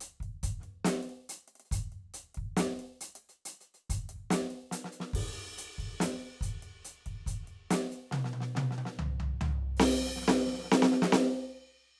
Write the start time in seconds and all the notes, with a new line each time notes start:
0.01 closed hi-hat
0.21 kick, closed hi-hat
0.43 closed hi-hat, kick
0.61 snare, closed hi-hat
0.85 closed hi-hat, snare
1.03 closed hi-hat
1.10 closed hi-hat
1.30 closed hi-hat
1.48 closed hi-hat
1.56 closed hi-hat
1.60 closed hi-hat
1.65 closed hi-hat
1.72 closed hi-hat, kick
1.92 closed hi-hat
2.14 closed hi-hat
2.35 kick, closed hi-hat
2.57 closed hi-hat, snare
2.80 closed hi-hat
3.01 closed hi-hat
3.16 closed hi-hat
3.29 closed hi-hat
3.46 closed hi-hat
3.61 closed hi-hat
3.74 closed hi-hat
3.90 closed hi-hat, kick
4.09 closed hi-hat
4.16 kick
4.31 closed hi-hat, snare
4.51 closed hi-hat
4.72 closed hi-hat, snare
4.85 snare
4.93 closed hi-hat
5.01 snare
5.14 kick, crash
5.34 closed hi-hat
5.58 closed hi-hat
5.79 kick, closed hi-hat
6.01 closed hi-hat, snare
6.20 closed hi-hat
6.41 closed hi-hat, kick
6.63 closed hi-hat
6.85 closed hi-hat
7.06 kick, closed hi-hat
7.27 closed hi-hat, kick
7.43 snare
7.48 closed hi-hat
7.71 closed hi-hat, snare
7.92 closed hi-hat
8.12 snare, high tom
8.25 snare
8.34 high tom
8.41 snare
8.56 snare, high tom
8.71 snare
8.78 high tom
8.86 snare
8.99 floor tom
9.20 floor tom
9.41 snare, floor tom
9.77 snare, hi-hat pedal, crash
10.01 snare
10.07 snare
10.17 snare
10.22 snare
10.28 snare
10.38 snare
10.47 snare
10.53 snare
10.59 snare
10.65 snare
10.72 snare
10.83 snare
10.92 snare
11.13 snare